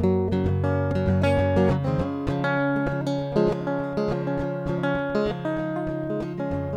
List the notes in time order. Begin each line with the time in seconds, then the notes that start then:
0.00 A#3
0.06 F#3
0.34 C#3 F#3
0.48 F#2 C#3 F#3
0.66 A#3 C#4
0.78 F#2
0.93 A#3
0.97 F#3
1.08 F#2 C#3 F#3
1.12 A#3
1.24 F#3 A#3 C#4
1.39 F#2 C#3 F#3 A#3
1.59 F#2 F#3 A#3
1.71 F2 C#3 F#3 A#3
1.84 C#3 G#3 C4
1.91 D#3
2.02 C#3 F3
2.29 C#3 F3
2.46 C#4
2.60 F3
2.78 F3 G#3
2.89 C#3 F3 G#3
3.08 C#4
3.21 F3
3.38 F3 G#3
3.49 C#3 F3
3.55 G#3
3.69 C#4
3.81 F3
3.99 F3 G#3
4.11 C#3 F3
4.15 G#3
4.29 C#4
4.40 C#3 F3 G#3
4.69 C#3 F3 A3
4.85 C#4
4.97 C#3 F3
5.17 F3 G#3
5.28 C#3 F3
5.33 G#3
5.47 D#4
5.59 F3 G#3
5.78 F4
5.89 C#3 F3
6.12 G#3
6.23 F3 D#4
6.41 G#3 C#4
6.53 F2 C#3 F3